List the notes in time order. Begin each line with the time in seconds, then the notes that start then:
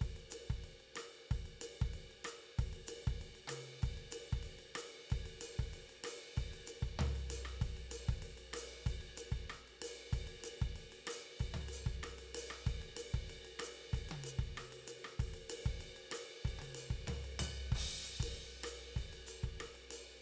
0.01 kick, ride
0.16 ride
0.30 hi-hat pedal, ride
0.50 kick
0.64 ride
0.80 ride
0.96 cross-stick, hi-hat pedal, ride
1.31 kick, ride
1.46 ride
1.61 hi-hat pedal, ride
1.81 kick
1.94 ride
2.11 ride
2.24 cross-stick, hi-hat pedal, ride
2.59 kick, ride
2.73 ride
2.87 hi-hat pedal, ride
3.07 kick
3.21 ride
3.35 ride
3.47 cross-stick, hi-hat pedal, high tom, ride
3.82 kick, ride
3.97 ride
4.11 hi-hat pedal, ride
4.32 kick
4.43 ride
4.59 ride
4.75 cross-stick, hi-hat pedal, ride
5.10 kick, ride
5.26 ride
5.41 hi-hat pedal, ride
5.59 kick
5.73 ride
5.89 ride
6.04 cross-stick, hi-hat pedal, ride
6.37 kick, ride
6.53 ride
6.66 hi-hat pedal, ride
6.82 kick
6.99 floor tom, ride
7.16 ride
7.30 hi-hat pedal, ride
7.45 cross-stick
7.61 kick, ride
7.77 ride
7.91 hi-hat pedal, ride
8.08 kick
8.22 ride
8.37 ride
8.53 cross-stick, hi-hat pedal, ride
8.86 kick, ride
9.01 ride
9.17 hi-hat pedal, ride
9.32 kick
9.50 cross-stick, ride
9.68 ride
9.82 hi-hat pedal, ride
10.12 kick, ride
10.27 ride
10.44 hi-hat pedal, ride
10.61 kick
10.76 ride
10.92 ride
11.07 cross-stick, hi-hat pedal, ride
11.40 kick, ride
11.54 floor tom, ride
11.69 hi-hat pedal, ride
11.86 kick
12.03 cross-stick, ride
12.18 ride
12.35 hi-hat pedal, ride
12.50 cross-stick
12.66 kick, ride
12.82 ride
12.97 hi-hat pedal, ride
13.14 kick
13.30 ride
13.45 ride
13.59 cross-stick, ride
13.63 hi-hat pedal
13.93 kick, ride
14.09 high tom, ride
14.24 hi-hat pedal, ride
14.39 kick
14.57 cross-stick, ride
14.72 ride
14.87 hi-hat pedal, ride
15.04 cross-stick
15.19 kick, ride
15.34 ride
15.49 hi-hat pedal, ride
15.66 kick
15.81 ride
15.96 ride
16.11 cross-stick, hi-hat pedal, ride
16.45 kick, ride
16.59 high tom, ride
16.75 hi-hat pedal, ride
16.90 kick
17.07 floor tom, ride
17.24 ride
17.39 floor tom, hi-hat pedal, ride bell
17.72 kick, ride
18.04 hi-hat pedal
18.20 kick, ride
18.64 cross-stick, hi-hat pedal, ride
18.96 kick, ride
19.13 ride
19.26 hi-hat pedal, ride
19.43 kick
19.52 kick
19.60 cross-stick, ride
19.75 ride
19.91 hi-hat pedal, ride